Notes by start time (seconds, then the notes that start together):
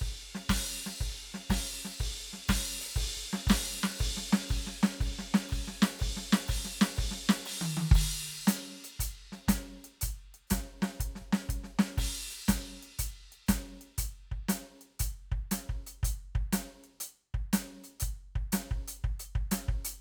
0.01 kick, ride
0.35 snare
0.50 kick, snare, hi-hat pedal, crash
0.87 snare
1.01 kick, ride
1.35 snare
1.50 kick, snare, hi-hat pedal, crash
1.85 snare
2.01 kick, ride
2.34 snare
2.48 kick, snare, hi-hat pedal, crash
2.81 open hi-hat
2.95 kick, hi-hat pedal, ride
3.17 kick
3.34 snare
3.48 kick, snare, crash
3.84 snare
4.00 kick, hi-hat pedal, ride
4.18 snare
4.33 snare
4.50 kick, hi-hat pedal, crash
4.67 snare
4.84 snare
5.01 kick, hi-hat pedal, ride
5.19 snare
5.35 snare
5.50 kick, hi-hat pedal, crash
5.68 snare
5.83 snare
6.00 kick, hi-hat pedal, ride
6.17 snare
6.33 snare
6.49 kick, hi-hat pedal, crash
6.66 snare
6.82 snare
6.97 kick, hi-hat pedal, ride
7.12 snare
7.19 kick
7.30 snare
7.46 crash
7.62 high tom
7.78 high tom
7.92 kick, crash
8.46 closed hi-hat, snare, hi-hat pedal
8.85 closed hi-hat
9.00 closed hi-hat, kick
9.33 snare
9.49 closed hi-hat, kick, snare
9.85 closed hi-hat
10.02 closed hi-hat, kick
10.35 closed hi-hat
10.48 closed hi-hat, snare, hi-hat pedal
10.52 kick
10.83 snare
11.01 kick, closed hi-hat
11.16 snare
11.22 kick
11.33 snare
11.50 kick, closed hi-hat
11.64 snare
11.80 snare
11.98 kick, crash
12.31 closed hi-hat
12.49 closed hi-hat, kick, snare
12.83 closed hi-hat
13.00 closed hi-hat, kick
13.33 closed hi-hat
13.47 closed hi-hat, kick, snare, hi-hat pedal
13.82 closed hi-hat
13.99 closed hi-hat, kick
14.32 kick
14.49 closed hi-hat, snare
14.82 closed hi-hat
15.00 closed hi-hat, kick
15.32 kick
15.52 closed hi-hat, snare
15.70 kick
15.87 closed hi-hat
16.04 closed hi-hat, kick
16.36 kick
16.53 closed hi-hat, snare
16.85 closed hi-hat
17.01 closed hi-hat
17.35 kick
17.54 closed hi-hat, snare
17.85 closed hi-hat
18.01 closed hi-hat, kick
18.36 kick
18.53 closed hi-hat, snare
18.72 kick
18.88 closed hi-hat
19.05 kick
19.20 closed hi-hat
19.36 kick
19.52 closed hi-hat, snare
19.69 kick
19.85 closed hi-hat